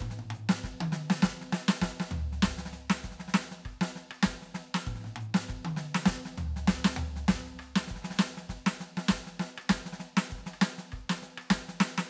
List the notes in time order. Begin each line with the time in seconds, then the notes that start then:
0.01 kick, mid tom
0.11 snare
0.19 mid tom
0.31 hi-hat pedal, mid tom
0.49 snare
0.64 kick, snare
0.81 high tom
0.93 snare, hi-hat pedal
1.10 snare
1.23 kick, snare
1.42 snare
1.53 snare, hi-hat pedal
1.69 snare
1.82 kick, snare
2.00 snare
2.11 floor tom, hi-hat pedal
2.33 snare
2.43 kick, snare
2.59 snare
2.66 snare
2.73 snare, hi-hat pedal
2.90 snare
3.04 kick, snare
3.12 snare
3.18 snare
3.20 snare
3.28 snare
3.34 snare, hi-hat pedal
3.52 snare
3.66 kick, cross-stick
3.82 snare
3.96 snare, hi-hat pedal
4.11 cross-stick
4.23 kick, snare
4.42 snare
4.55 snare, hi-hat pedal
4.75 snare
4.86 kick, snare, mid tom
4.96 kick, snare
5.00 snare
5.05 snare, mid tom
5.16 mid tom
5.21 hi-hat pedal, mid tom
5.35 snare
5.49 kick, snare
5.65 high tom
5.77 snare, hi-hat pedal
5.95 snare
6.06 kick, snare
6.13 kick
6.26 snare
6.38 floor tom, hi-hat pedal
6.57 snare
6.68 kick, snare
6.74 kick
6.85 snare
6.97 hi-hat pedal, floor tom
7.16 snare
7.29 kick, snare
7.35 kick
7.46 snare
7.60 cross-stick, hi-hat pedal
7.76 snare
7.88 kick, snare
7.96 snare
8.02 snare
8.05 snare
8.11 snare
8.16 snare
8.19 snare, hi-hat pedal
8.38 snare
8.50 kick, snare
8.67 snare
8.79 snare, hi-hat pedal
8.97 snare
9.09 kick, snare
9.27 snare
9.40 snare, hi-hat pedal
9.58 cross-stick
9.70 kick, snare
9.86 snare
9.93 snare
10.00 snare, hi-hat pedal
10.17 snare
10.30 kick, snare
10.38 snare
10.45 snare
10.47 snare
10.54 cross-stick
10.58 cross-stick
10.62 snare, hi-hat pedal
10.79 snare
10.92 kick, cross-stick
11.10 snare
11.22 snare, hi-hat pedal
11.38 cross-stick
11.51 kick, snare
11.69 snare
11.81 snare, hi-hat pedal
11.98 snare